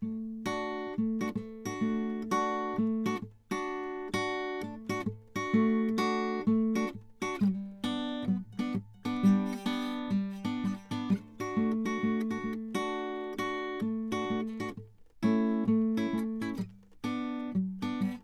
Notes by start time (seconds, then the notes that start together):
0.03 A3
0.46 D4 F#4
0.99 A3
1.22 D4 F#4
1.36 A3
1.66 D4 F#4
1.82 A3
2.32 D4 F#4
2.79 A3
3.06 D4 F#4
3.52 D4 F#4
4.14 D4 F#4
4.63 A3
4.90 D4 F#4
5.37 D4 F#4
5.54 A3
5.99 D4 F#4
6.47 A3
6.76 D4 F#4
7.22 D4 F#4
7.42 G3
7.84 B3 D4
8.29 F#3
8.60 B3 D4
9.06 B3 D4
9.24 G3
9.66 B3 D4
10.12 G3
10.46 B3 D4
10.65 G3
10.92 B3 D4
11.11 A3
11.41 D4 F#4
11.58 A3
11.86 D4 F#4
12.04 A3
12.31 D4 F#4
12.45 A3
12.75 D4 F#4
13.39 D4 F#4
13.82 A3
14.13 D4 F#4
14.31 A3
14.61 D4 F#4
15.23 A3 C#4 E4
15.69 A3
15.98 C#4 E4
16.14 A3
16.43 C#4 E4
17.05 B3 D4
17.56 F#3
17.83 B3 D4
18.02 G3